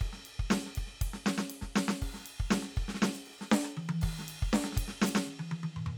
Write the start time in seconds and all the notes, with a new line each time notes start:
0.01 kick, ride
0.13 snare
0.18 snare
0.25 ride
0.39 kick
0.51 snare, ride
0.66 snare
0.75 kick, ride
0.87 snare
0.95 snare
1.01 kick, ride
1.14 snare
1.26 snare
1.38 snare
1.50 ride
1.62 kick, snare
1.76 snare
1.88 snare
2.02 kick, crash
2.14 snare
2.20 snare
2.26 ride
2.40 kick
2.51 snare, ride
2.63 snare
2.72 snare
2.76 kick, ride
2.88 snare
2.95 snare
3.02 snare
3.14 open hi-hat
3.26 ride
3.41 snare
3.52 snare
3.65 cross-stick
3.77 high tom
3.89 high tom
4.02 kick, crash
4.19 snare
4.28 ride
4.42 kick
4.53 snare, ride
4.64 snare
4.73 snare
4.77 kick, ride
4.88 snare
5.02 snare
5.06 hi-hat pedal
5.15 snare
5.27 high tom
5.39 high tom
5.51 high tom
5.64 high tom
5.76 mid tom
5.86 mid tom